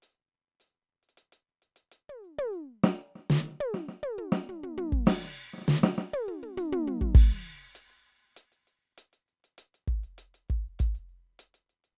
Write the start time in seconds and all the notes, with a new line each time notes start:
0.00 hi-hat pedal
0.60 hi-hat pedal
1.03 closed hi-hat
1.09 closed hi-hat
1.17 closed hi-hat
1.32 closed hi-hat
1.49 closed hi-hat
1.62 closed hi-hat
1.76 closed hi-hat
1.92 closed hi-hat
2.09 high tom
2.24 closed hi-hat
2.38 high tom
2.53 closed hi-hat
2.84 snare
3.15 snare
3.19 snare
3.30 snare
3.43 snare
3.46 snare
3.48 snare
3.52 snare
3.60 high tom
3.74 snare
3.89 snare
4.03 high tom
4.17 mid tom
4.32 snare
4.48 floor tom
4.63 floor tom
4.77 floor tom
4.92 kick
5.06 snare, crash
5.25 snare
5.35 hi-hat pedal
5.54 snare
5.58 snare
5.62 snare
5.65 snare
5.68 snare
5.83 snare
5.95 snare, hi-hat pedal
6.13 high tom
6.28 mid tom
6.42 mid tom
6.57 floor tom, hi-hat pedal
6.72 floor tom
6.87 floor tom
7.00 kick, floor tom
7.12 kick, hi-hat pedal, crash
7.30 closed hi-hat
7.42 closed hi-hat
7.58 closed hi-hat
7.75 closed hi-hat
7.90 closed hi-hat
8.06 closed hi-hat
8.20 closed hi-hat
8.36 closed hi-hat
8.52 closed hi-hat
8.67 closed hi-hat
8.98 closed hi-hat
9.13 closed hi-hat
9.28 closed hi-hat
9.44 closed hi-hat
9.58 closed hi-hat
9.74 closed hi-hat
9.88 kick, closed hi-hat
9.95 kick
10.03 closed hi-hat
10.18 closed hi-hat
10.34 closed hi-hat
10.48 closed hi-hat, kick
10.65 closed hi-hat
10.79 closed hi-hat, kick
10.95 closed hi-hat
11.09 closed hi-hat
11.25 closed hi-hat
11.39 closed hi-hat
11.54 closed hi-hat
11.69 closed hi-hat
11.84 closed hi-hat